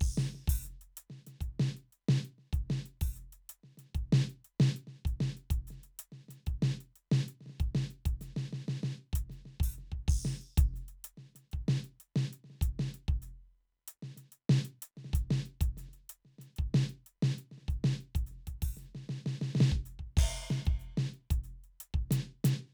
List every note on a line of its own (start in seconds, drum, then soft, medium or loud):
0.01 kick medium
0.01 crash medium
0.18 snare medium
0.35 snare soft
0.48 open hi-hat loud
0.48 kick medium
0.65 snare soft
0.65 hi-hat pedal medium
0.82 closed hi-hat soft
0.97 closed hi-hat medium
1.11 snare soft
1.27 snare soft
1.27 closed hi-hat soft
1.41 kick soft
1.41 closed hi-hat soft
1.60 snare loud
1.77 closed hi-hat soft
1.93 closed hi-hat soft
2.09 snare loud
2.25 closed hi-hat soft
2.39 snare soft
2.53 kick medium
2.53 closed hi-hat soft
2.71 snare medium
2.86 closed hi-hat soft
3.02 kick medium
3.02 open hi-hat medium
3.16 hi-hat pedal medium
3.33 closed hi-hat soft
3.50 closed hi-hat medium
3.64 snare soft
3.78 snare soft
3.78 closed hi-hat soft
3.95 kick soft
3.95 closed hi-hat soft
4.13 snare loud
4.30 closed hi-hat soft
4.45 closed hi-hat soft
4.61 snare loud
4.77 closed hi-hat soft
4.88 snare soft
5.06 kick medium
5.06 closed hi-hat soft
5.21 snare medium
5.37 closed hi-hat soft
5.51 closed hi-hat medium
5.51 kick medium
5.68 snare soft
5.68 hi-hat pedal medium
5.84 closed hi-hat soft
5.99 closed hi-hat medium
6.13 snare soft
6.29 snare soft
6.29 closed hi-hat soft
6.47 kick soft
6.47 closed hi-hat soft
6.63 snare loud
6.81 closed hi-hat soft
6.96 closed hi-hat soft
7.12 snare loud
7.29 closed hi-hat soft
7.41 snare soft
7.47 snare soft
7.50 snare soft
7.56 snare soft
7.60 kick medium
7.60 closed hi-hat soft
7.75 snare medium
7.91 closed hi-hat soft
8.06 kick medium
8.06 open hi-hat medium
8.21 snare soft
8.21 hi-hat pedal medium
8.37 snare medium
8.53 snare medium
8.69 snare medium
8.84 snare medium
9.14 open hi-hat loud
9.14 kick medium
9.30 snare soft
9.30 hi-hat pedal soft
9.46 snare soft
9.61 open hi-hat medium
9.61 kick medium
9.74 hi-hat pedal medium
9.79 snare soft
9.92 kick soft
10.09 kick medium
10.09 crash medium
10.26 snare medium
10.42 closed hi-hat soft
10.58 closed hi-hat loud
10.58 kick medium
10.74 snare soft
10.74 hi-hat pedal medium
10.89 closed hi-hat soft
11.05 closed hi-hat medium
11.18 snare soft
11.36 snare soft
11.36 closed hi-hat soft
11.52 kick soft
11.52 closed hi-hat soft
11.69 snare loud
11.85 closed hi-hat soft
12.01 closed hi-hat soft
12.16 snare medium
12.33 closed hi-hat soft
12.45 snare soft
12.51 snare soft
12.56 snare soft
12.62 kick medium
12.62 closed hi-hat medium
12.80 snare medium
12.95 closed hi-hat soft
13.09 kick medium
13.09 open hi-hat soft
13.22 hi-hat pedal medium
13.88 closed hi-hat medium
14.03 snare soft
14.17 snare soft
14.17 closed hi-hat soft
14.32 closed hi-hat soft
14.50 snare loud
14.65 closed hi-hat medium
14.83 closed hi-hat medium
14.98 snare soft
15.05 snare soft
15.10 kick medium
15.10 snare soft
15.16 closed hi-hat medium
15.31 snare medium
15.46 closed hi-hat soft
15.61 closed hi-hat medium
15.61 kick medium
15.78 snare soft
15.78 hi-hat pedal medium
15.89 snare soft
15.94 closed hi-hat soft
16.10 closed hi-hat medium
16.26 snare soft
16.39 snare soft
16.39 closed hi-hat soft
16.57 kick soft
16.57 closed hi-hat soft
16.75 snare loud
16.90 closed hi-hat soft
17.07 closed hi-hat soft
17.23 snare loud
17.39 closed hi-hat soft
17.52 snare soft
17.58 snare soft
17.64 snare soft
17.69 kick soft
17.69 closed hi-hat soft
17.85 snare loud
18.01 closed hi-hat soft
18.16 kick medium
18.16 open hi-hat medium
18.27 hi-hat pedal medium
18.32 snare soft
18.48 kick soft
18.48 closed hi-hat soft
18.63 open hi-hat medium
18.63 kick soft
18.77 snare soft
18.82 hi-hat pedal soft
18.95 snare soft
19.10 snare medium
19.27 snare medium
19.42 snare medium
19.56 snare medium
19.61 snare loud
19.72 kick medium
19.86 hi-hat pedal medium
20.00 kick soft
20.17 kick medium
20.17 crash medium
20.17 ride loud
20.51 snare medium
20.66 kick medium
20.66 closed hi-hat soft
20.80 closed hi-hat soft
20.80 hi-hat pedal soft
20.98 snare medium
21.14 closed hi-hat soft
21.31 closed hi-hat medium
21.31 kick medium
21.44 hi-hat pedal medium
21.64 closed hi-hat soft
21.81 closed hi-hat medium
21.94 kick medium
22.11 open hi-hat loud
22.11 snare loud
22.18 snare soft
22.45 open hi-hat loud
22.45 snare loud
22.61 snare soft
22.65 snare soft